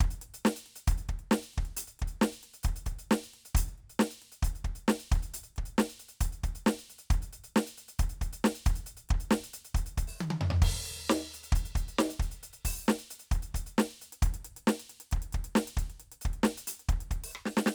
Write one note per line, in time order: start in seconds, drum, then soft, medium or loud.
0.01 kick loud
0.01 closed hi-hat medium
0.11 closed hi-hat medium
0.22 closed hi-hat medium
0.34 closed hi-hat medium
0.44 kick soft
0.44 snare loud
0.57 closed hi-hat medium
0.66 closed hi-hat soft
0.76 closed hi-hat medium
0.88 closed hi-hat medium
0.88 kick loud
0.98 closed hi-hat soft
1.09 kick medium
1.09 closed hi-hat soft
1.20 closed hi-hat soft
1.32 snare loud
1.43 closed hi-hat soft
1.54 closed hi-hat soft
1.58 kick medium
1.66 closed hi-hat soft
1.77 closed hi-hat loud
1.88 closed hi-hat soft
2.00 kick medium
2.00 closed hi-hat soft
2.08 closed hi-hat soft
2.22 snare loud
2.33 closed hi-hat soft
2.44 closed hi-hat medium
2.54 closed hi-hat soft
2.64 closed hi-hat medium
2.64 kick loud
2.76 closed hi-hat medium
2.87 kick medium
2.99 closed hi-hat soft
3.11 snare loud
3.24 closed hi-hat soft
3.34 closed hi-hat soft
3.46 closed hi-hat soft
3.55 closed hi-hat loud
3.55 kick loud
3.68 closed hi-hat soft
3.78 closed hi-hat soft
3.90 closed hi-hat soft
4.00 snare loud
4.11 closed hi-hat soft
4.22 closed hi-hat soft
4.32 closed hi-hat soft
4.43 closed hi-hat medium
4.43 kick loud
4.56 closed hi-hat soft
4.65 kick medium
4.65 closed hi-hat soft
4.76 closed hi-hat soft
4.89 snare loud
5.00 closed hi-hat medium
5.12 closed hi-hat soft
5.12 kick loud
5.23 closed hi-hat soft
5.34 closed hi-hat loud
5.44 closed hi-hat soft
5.57 kick medium
5.57 closed hi-hat soft
5.66 closed hi-hat soft
5.79 snare loud
5.90 closed hi-hat soft
6.00 closed hi-hat medium
6.09 closed hi-hat medium
6.21 closed hi-hat loud
6.21 kick loud
6.33 closed hi-hat soft
6.44 closed hi-hat soft
6.44 kick medium
6.56 closed hi-hat soft
6.67 snare loud
6.79 closed hi-hat soft
6.90 closed hi-hat medium
6.99 closed hi-hat soft
7.11 closed hi-hat medium
7.11 kick loud
7.23 closed hi-hat soft
7.33 closed hi-hat medium
7.44 closed hi-hat soft
7.56 snare loud
7.67 closed hi-hat medium
7.78 closed hi-hat medium
7.89 closed hi-hat medium
7.99 closed hi-hat medium
7.99 kick loud
8.10 closed hi-hat medium
8.22 closed hi-hat medium
8.22 kick medium
8.33 closed hi-hat medium
8.45 snare loud
8.55 closed hi-hat medium
8.66 closed hi-hat medium
8.66 kick loud
8.76 closed hi-hat medium
8.87 closed hi-hat medium
8.97 closed hi-hat soft
9.10 kick loud
9.10 closed hi-hat soft
9.21 closed hi-hat medium
9.31 snare loud
9.44 closed hi-hat medium
9.54 closed hi-hat medium
9.65 closed hi-hat medium
9.75 closed hi-hat medium
9.75 kick loud
9.87 closed hi-hat medium
9.98 closed hi-hat medium
9.98 kick medium
10.08 open hi-hat medium
10.21 hi-hat pedal soft
10.21 high tom loud
10.31 high tom loud
10.41 floor tom loud
10.51 floor tom loud
10.62 kick loud
10.62 crash loud
10.86 closed hi-hat soft
11.00 closed hi-hat soft
11.10 snare loud
11.23 closed hi-hat soft
11.34 closed hi-hat medium
11.44 closed hi-hat medium
11.53 closed hi-hat medium
11.53 kick loud
11.66 closed hi-hat medium
11.76 closed hi-hat medium
11.76 kick loud
11.89 closed hi-hat medium
11.99 snare loud
12.10 closed hi-hat medium
12.20 closed hi-hat medium
12.20 kick loud
12.32 closed hi-hat soft
12.44 closed hi-hat medium
12.54 closed hi-hat medium
12.65 open hi-hat loud
12.65 kick medium
12.77 open hi-hat soft
12.85 snare loud
12.85 hi-hat pedal soft
12.99 closed hi-hat medium
13.11 closed hi-hat medium
13.20 closed hi-hat medium
13.32 closed hi-hat medium
13.32 kick loud
13.43 closed hi-hat medium
13.55 closed hi-hat medium
13.55 kick medium
13.67 closed hi-hat soft
13.79 snare loud
13.91 closed hi-hat soft
14.02 closed hi-hat medium
14.13 closed hi-hat medium
14.23 kick loud
14.23 closed hi-hat medium
14.34 closed hi-hat medium
14.45 closed hi-hat medium
14.57 closed hi-hat medium
14.68 snare loud
14.80 closed hi-hat medium
14.90 closed hi-hat medium
15.01 closed hi-hat medium
15.12 kick loud
15.12 closed hi-hat medium
15.23 closed hi-hat medium
15.33 kick medium
15.33 closed hi-hat medium
15.45 closed hi-hat medium
15.56 snare loud
15.68 closed hi-hat medium
15.77 kick loud
15.77 closed hi-hat medium
15.90 closed hi-hat soft
16.00 closed hi-hat medium
16.12 closed hi-hat medium
16.22 closed hi-hat medium
16.22 kick medium
16.34 closed hi-hat soft
16.44 snare loud
16.58 closed hi-hat medium
16.68 closed hi-hat loud
16.80 closed hi-hat medium
16.89 kick loud
16.89 closed hi-hat medium
17.01 closed hi-hat medium
17.11 kick medium
17.11 closed hi-hat medium
17.24 open hi-hat loud
17.31 hi-hat pedal medium
17.36 cross-stick medium
17.46 snare medium
17.57 snare loud
17.67 snare loud